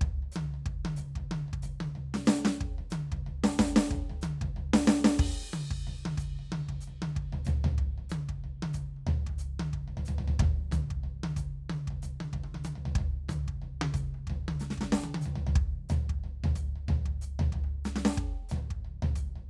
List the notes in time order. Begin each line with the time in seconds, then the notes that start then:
0.01 kick, floor tom
0.20 kick, floor tom
0.32 hi-hat pedal
0.36 high tom
0.54 floor tom
0.66 kick, floor tom
0.85 high tom
0.96 floor tom, hi-hat pedal
1.15 kick, floor tom
1.31 high tom
1.48 floor tom
1.53 kick
1.62 floor tom, hi-hat pedal
1.80 high tom
1.95 floor tom
2.14 snare
2.25 kick, snare, hi-hat pedal
2.45 snare
2.60 kick, floor tom
2.78 floor tom
2.90 hi-hat pedal, high tom
3.12 kick, floor tom
3.26 floor tom
3.44 snare
3.58 kick, snare, hi-hat pedal
3.76 snare
3.91 kick, floor tom
4.10 floor tom
4.21 hi-hat pedal, high tom
4.41 kick, floor tom
4.56 floor tom
4.74 snare
4.85 snare, hi-hat pedal
5.04 snare
5.19 kick, crash
5.52 hi-hat pedal, high tom
5.71 kick
5.87 floor tom
6.05 high tom
6.17 kick, floor tom, hi-hat pedal
6.39 floor tom
6.52 high tom
6.69 kick, floor tom
6.81 hi-hat pedal
6.88 floor tom
7.02 high tom
7.16 kick, floor tom
7.32 floor tom
7.45 floor tom, hi-hat pedal
7.64 floor tom
7.78 kick, floor tom
7.98 floor tom
8.09 hi-hat pedal, high tom
8.29 kick, floor tom
8.44 floor tom
8.62 high tom
8.73 kick, floor tom, hi-hat pedal
8.96 high tom
9.07 floor tom
9.26 kick, high tom
9.38 floor tom, hi-hat pedal
9.60 high tom
9.73 kick, floor tom
9.88 floor tom
9.97 floor tom
10.05 floor tom, hi-hat pedal
10.18 floor tom
10.28 floor tom
10.39 kick, floor tom
10.72 floor tom, hi-hat pedal, high tom
10.90 kick
11.04 floor tom
11.23 high tom
11.36 kick, floor tom, hi-hat pedal
11.70 high tom
11.87 kick, floor tom
12.02 floor tom, hi-hat pedal
12.20 high tom
12.33 kick, floor tom
12.44 high tom
12.54 high tom
12.64 hi-hat pedal, high tom
12.76 floor tom
12.85 floor tom
12.95 kick, floor tom
13.29 floor tom, hi-hat pedal, high tom
13.48 kick
13.62 floor tom
13.81 high tom
13.94 kick, floor tom, hi-hat pedal
14.14 high tom
14.27 kick, floor tom
14.48 high tom
14.60 snare, hi-hat pedal
14.70 snare
14.77 kick, snare
14.92 snare
15.04 high tom
15.14 high tom
15.21 hi-hat pedal
15.26 floor tom
15.36 floor tom
15.47 floor tom
15.56 kick
15.89 floor tom, hi-hat pedal
16.09 kick
16.24 floor tom
16.44 floor tom
16.55 kick, floor tom, hi-hat pedal
16.76 floor tom
16.88 floor tom
17.06 kick, floor tom
17.21 floor tom, hi-hat pedal
17.39 floor tom
17.52 kick, floor tom
17.64 high tom
17.85 snare, hi-hat pedal
17.96 snare
18.05 snare
18.17 kick
18.49 floor tom, hi-hat pedal
18.56 floor tom
18.70 kick
18.85 floor tom
19.02 floor tom
19.15 kick, floor tom, hi-hat pedal
19.36 floor tom